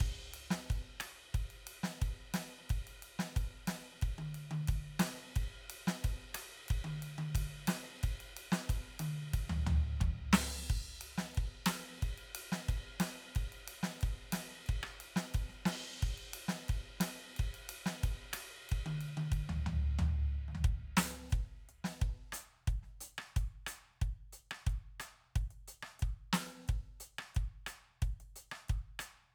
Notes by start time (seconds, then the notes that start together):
0.01 kick, ride
0.34 ride
0.51 snare
0.71 kick, ride
1.01 cross-stick, ride
1.35 kick, ride
1.51 ride
1.67 ride
1.84 snare
2.02 kick, ride
2.34 snare, ride
2.70 kick, ride
2.88 ride
3.03 ride
3.20 snare
3.37 kick, ride
3.68 snare, ride
4.02 kick, ride
4.19 high tom
4.35 ride
4.51 high tom
4.68 kick, ride
5.00 snare, ride
5.36 kick, ride
5.70 ride
5.88 snare
6.05 kick, ride
6.35 cross-stick, ride
6.69 kick, ride
6.85 high tom
7.03 ride
7.19 closed hi-hat, high tom
7.35 kick, ride
7.68 snare, ride
8.04 kick, ride
8.21 ride
8.37 ride
8.52 snare
8.70 kick, ride
9.00 high tom, ride
9.34 kick, ride
9.50 floor tom
9.67 floor tom
10.01 kick, floor tom
10.33 snare, crash
10.70 kick, ride
11.02 ride
11.18 snare
11.35 kick, ride
11.67 snare, ride
12.03 kick, ride
12.18 ride
12.36 ride
12.52 snare
12.69 kick, ride
13.01 snare, ride
13.36 kick, ride
13.53 ride
13.68 ride
13.83 snare
14.02 kick, ride
14.33 snare, ride
14.52 snare
14.67 kick, ride
14.84 cross-stick
15.01 ride
15.17 snare
15.35 kick, ride
15.49 snare
15.66 snare, ride
15.97 snare
16.03 kick, ride
16.18 ride
16.34 ride
16.49 snare
16.69 kick, ride
17.01 snare, ride
17.37 kick, ride
17.55 ride
17.70 ride
17.86 snare
18.04 kick, ride
18.34 cross-stick, ride
18.70 kick, ride
18.86 high tom
19.01 ride
19.18 high tom
19.32 kick, ride
19.50 floor tom
19.67 floor tom
19.99 floor tom
20.49 high tom
20.55 floor tom
20.65 kick
20.97 open hi-hat, snare
21.30 kick, hi-hat pedal
21.69 closed hi-hat
21.85 snare
22.02 kick, closed hi-hat
22.33 closed hi-hat, cross-stick
22.68 kick, closed hi-hat
22.83 snare
23.01 closed hi-hat
23.19 cross-stick
23.37 kick, closed hi-hat
23.67 closed hi-hat, cross-stick
24.02 kick, closed hi-hat
24.33 closed hi-hat
24.52 cross-stick
24.67 kick, closed hi-hat
25.00 closed hi-hat, cross-stick
25.36 kick, closed hi-hat
25.45 kick
25.51 closed hi-hat
25.68 closed hi-hat
25.83 cross-stick
26.00 kick, closed hi-hat
26.33 closed hi-hat, snare
26.68 kick, closed hi-hat
27.01 closed hi-hat
27.19 cross-stick
27.35 kick, closed hi-hat
27.67 closed hi-hat, cross-stick
28.02 kick, closed hi-hat
28.21 closed hi-hat
28.36 closed hi-hat
28.52 cross-stick
28.69 kick, closed hi-hat
29.00 closed hi-hat, cross-stick